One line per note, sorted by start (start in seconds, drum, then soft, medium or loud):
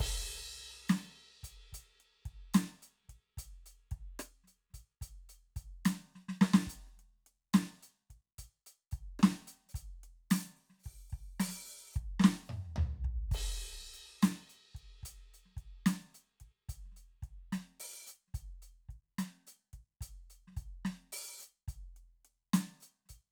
0.01 kick soft
0.01 crash loud
0.07 kick soft
0.88 closed hi-hat medium
0.88 snare loud
0.88 hi-hat pedal soft
1.00 snare soft
1.44 closed hi-hat medium
1.44 kick soft
1.74 closed hi-hat medium
1.74 kick soft
2.01 closed hi-hat soft
2.27 kick soft
2.27 closed hi-hat soft
2.55 closed hi-hat loud
2.55 snare loud
2.84 closed hi-hat medium
3.05 snare soft
3.10 kick soft
3.10 closed hi-hat soft
3.39 closed hi-hat medium
3.39 kick soft
3.67 closed hi-hat soft
3.92 kick soft
3.92 closed hi-hat soft
4.20 closed hi-hat medium
4.20 cross-stick medium
4.45 closed hi-hat soft
4.45 snare soft
4.71 closed hi-hat medium
4.71 kick soft
4.71 snare soft
5.02 closed hi-hat medium
5.02 kick soft
5.30 closed hi-hat soft
5.57 closed hi-hat medium
5.57 kick soft
5.86 closed hi-hat loud
5.86 snare loud
6.16 snare soft
6.30 snare medium
6.42 snare loud
6.55 snare loud
6.61 snare soft
6.61 hi-hat pedal soft
6.68 closed hi-hat medium
6.68 kick soft
6.88 cross-stick soft
6.94 snare soft
6.98 snare soft
6.98 closed hi-hat soft
7.28 closed hi-hat soft
7.55 open hi-hat loud
7.55 snare loud
7.55 hi-hat pedal medium
7.63 snare soft
7.84 closed hi-hat soft
8.11 kick soft
8.11 closed hi-hat soft
8.40 closed hi-hat medium
8.40 kick soft
8.68 closed hi-hat medium
8.93 closed hi-hat soft
8.93 kick soft
9.20 cross-stick medium
9.20 snare loud
9.49 open hi-hat medium
9.67 snare soft
9.67 hi-hat pedal soft
9.76 closed hi-hat medium
9.76 kick soft
10.05 closed hi-hat soft
10.32 open hi-hat loud
10.32 snare loud
10.42 snare soft
10.58 open hi-hat soft
10.71 snare soft
10.74 snare soft
10.79 snare soft
10.79 hi-hat pedal soft
10.85 open hi-hat soft
10.85 kick soft
11.11 kick soft
11.11 open hi-hat soft
11.41 open hi-hat loud
11.41 snare medium
11.50 snare soft
11.69 open hi-hat soft
11.95 kick soft
11.95 hi-hat pedal soft
11.95 open hi-hat soft
12.04 kick soft
12.21 snare loud
12.25 snare loud
12.34 snare soft
12.47 hi-hat pedal soft
12.47 mid tom medium
12.66 snare soft
12.71 snare soft
12.77 floor tom loud
13.06 kick soft
13.32 kick soft
13.32 hi-hat pedal medium
13.32 crash loud
13.39 kick soft
13.81 snare soft
13.95 closed hi-hat medium
14.24 open hi-hat loud
14.24 snare loud
14.51 closed hi-hat soft
14.76 kick soft
14.76 closed hi-hat soft
15.04 closed hi-hat medium
15.04 kick soft
15.35 closed hi-hat soft
15.47 snare soft
15.52 snare soft
15.58 kick soft
15.58 closed hi-hat soft
15.87 closed hi-hat medium
15.87 snare loud
16.16 closed hi-hat soft
16.41 kick soft
16.41 closed hi-hat soft
16.70 closed hi-hat medium
16.70 kick soft
16.86 snare soft
16.93 snare soft
16.96 closed hi-hat soft
16.96 snare soft
17.24 kick soft
17.24 closed hi-hat soft
17.54 closed hi-hat medium
17.54 snare medium
17.81 open hi-hat loud
18.08 closed hi-hat soft
18.08 hi-hat pedal medium
18.29 snare soft
18.35 closed hi-hat soft
18.35 kick soft
18.63 closed hi-hat soft
18.90 kick soft
18.90 closed hi-hat soft
19.20 closed hi-hat medium
19.20 snare medium
19.48 closed hi-hat soft
19.48 hi-hat pedal soft
19.74 kick soft
19.74 closed hi-hat soft
20.02 closed hi-hat medium
20.02 kick soft
20.31 closed hi-hat soft
20.49 snare soft
20.53 snare soft
20.58 closed hi-hat soft
20.58 kick soft
20.58 cross-stick soft
20.63 kick soft
20.86 snare medium
20.86 closed hi-hat soft
21.14 open hi-hat loud
21.41 closed hi-hat soft
21.41 hi-hat pedal medium
21.69 closed hi-hat medium
21.69 kick soft
21.98 closed hi-hat soft
22.26 closed hi-hat soft
22.55 closed hi-hat loud
22.55 snare loud
22.82 closed hi-hat soft
22.82 hi-hat pedal soft
23.07 closed hi-hat soft
23.07 snare soft
23.11 kick soft